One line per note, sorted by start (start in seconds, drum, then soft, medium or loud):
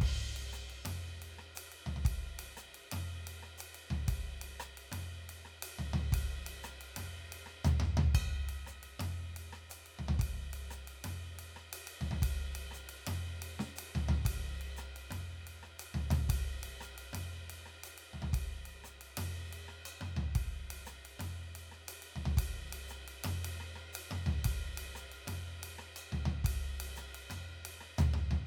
0.01 kick medium
0.01 ride medium
0.36 ride medium
0.52 cross-stick soft
0.52 hi-hat pedal medium
0.70 ride soft
0.85 mid tom medium
0.85 ride loud
1.22 ride medium
1.38 cross-stick medium
1.55 hi-hat pedal medium
1.55 ride loud
1.72 ride medium
1.86 floor tom medium
1.96 floor tom medium
2.05 kick medium
2.05 ride loud
2.39 ride loud
2.57 cross-stick medium
2.57 hi-hat pedal medium
2.74 ride medium
2.91 mid tom medium
2.91 ride loud
3.27 ride medium
3.42 cross-stick medium
3.58 hi-hat pedal medium
3.58 ride loud
3.74 ride medium
3.90 floor tom medium
4.08 kick medium
4.08 ride loud
4.41 ride medium
4.59 cross-stick medium
4.59 hi-hat pedal medium
4.77 ride medium
4.92 mid tom medium
4.92 ride loud
5.29 ride medium
5.45 cross-stick medium
5.62 hi-hat pedal medium
5.62 ride loud
5.78 floor tom medium
5.93 floor tom loud
6.12 kick medium
6.12 ride loud
6.46 ride loud
6.63 cross-stick medium
6.63 hi-hat pedal medium
6.81 ride medium
6.96 mid tom medium
6.96 ride loud
7.32 ride medium
7.46 cross-stick medium
7.64 floor tom loud
7.64 hi-hat pedal medium
7.80 mid tom loud
7.97 floor tom loud
8.14 kick medium
8.14 ride bell loud
8.49 ride medium
8.66 cross-stick medium
8.66 hi-hat pedal medium
8.83 ride medium
8.99 mid tom loud
8.99 ride medium
9.36 ride medium
9.52 cross-stick medium
9.69 hi-hat pedal medium
9.69 ride medium
9.86 ride medium
9.99 floor tom medium
10.08 floor tom loud
10.19 kick medium
10.19 ride loud
10.53 ride medium
10.70 cross-stick medium
10.70 hi-hat pedal medium
10.87 ride medium
11.04 mid tom medium
11.04 ride loud
11.39 ride medium
11.56 cross-stick medium
11.72 hi-hat pedal medium
11.72 ride loud
11.87 ride medium
12.01 floor tom medium
12.22 kick medium
12.22 ride loud
12.55 ride loud
12.71 cross-stick medium
12.71 hi-hat pedal medium
12.89 ride medium
13.07 mid tom loud
13.07 ride loud
13.42 ride loud
13.59 snare medium
13.76 hi-hat pedal medium
13.76 ride loud
13.95 floor tom medium
14.08 floor tom loud
14.25 kick medium
14.25 ride loud
14.61 ride medium
14.76 cross-stick medium
14.76 hi-hat pedal medium
14.96 ride medium
15.10 mid tom medium
15.10 ride medium
15.47 ride medium
15.63 cross-stick medium
15.79 hi-hat pedal medium
15.79 ride loud
15.94 floor tom medium
16.10 floor tom loud
16.10 ride medium
16.29 kick medium
16.29 ride loud
16.63 ride loud
16.81 cross-stick medium
16.81 hi-hat pedal medium
16.98 ride medium
17.13 mid tom medium
17.13 ride loud
17.50 ride medium
17.66 cross-stick soft
17.83 hi-hat pedal medium
17.83 ride medium
17.98 ride medium
18.13 floor tom soft
18.22 floor tom medium
18.33 kick medium
18.33 ride loud
18.65 ride medium
18.84 cross-stick medium
18.84 hi-hat pedal medium
19.01 ride medium
19.17 mid tom medium
19.17 ride loud
19.53 ride medium
19.68 cross-stick medium
19.85 hi-hat pedal medium
19.85 ride bell medium
20.01 mid tom medium
20.16 floor tom medium
20.35 kick medium
20.35 ride medium
20.70 ride loud
20.85 cross-stick medium
20.85 hi-hat pedal medium
21.05 ride medium
21.19 mid tom medium
21.19 ride medium
21.55 ride medium
21.71 cross-stick soft
21.88 hi-hat pedal medium
21.88 ride loud
22.02 ride medium
22.16 floor tom medium
22.25 floor tom medium
22.37 kick medium
22.37 ride loud
22.72 ride loud
22.88 cross-stick medium
22.88 hi-hat pedal medium
23.08 ride medium
23.24 mid tom loud
23.24 ride loud
23.44 ride loud
23.60 cross-stick medium
23.75 cross-stick medium
23.93 hi-hat pedal medium
23.93 ride loud
24.11 mid tom medium
24.26 floor tom loud
24.44 kick medium
24.44 ride loud
24.77 ride loud
24.95 cross-stick medium
24.95 hi-hat pedal medium
25.12 ride medium
25.27 mid tom medium
25.27 ride loud
25.63 ride loud
25.78 cross-stick medium
25.96 hi-hat pedal medium
25.96 ride bell medium
26.12 floor tom medium
26.25 floor tom loud
26.44 kick medium
26.44 ride loud
26.80 ride loud
26.96 cross-stick medium
26.96 hi-hat pedal medium
27.14 ride medium
27.30 mid tom medium
27.30 ride bell medium
27.65 ride loud
27.80 cross-stick medium
27.98 floor tom loud
27.98 hi-hat pedal medium
28.13 mid tom medium
28.31 floor tom medium